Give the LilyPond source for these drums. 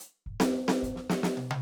\new DrumStaff \drummode { \time 4/4 \tempo 4 = 144 \tuplet 3/2 { hh8 r8 bd8 <sn hh>8 r8 sn8 <bd hh>8 sn8 sn8 sn8 tommh8 tommh8 } | }